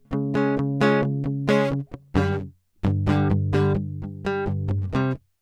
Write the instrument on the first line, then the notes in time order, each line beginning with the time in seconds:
acoustic guitar
0.13 C#3 G#3
0.36 G#3 C#4
0.60 C#3 G#3
0.83 G#3 C#4 F4
0.98 G#3
1.05 C#3 G#3
1.26 C#3 G#3
1.50 G#3 C#4 F4
1.73 C#3
2.17 F#2 D3 G3
2.85 G2 D3 G3
3.09 G2 D3 G3
3.33 G2 D3
3.55 D3 G3
3.77 G2
4.04 G2
4.27 G3
4.48 G2 D3
4.70 F#2
4.96 C3 G3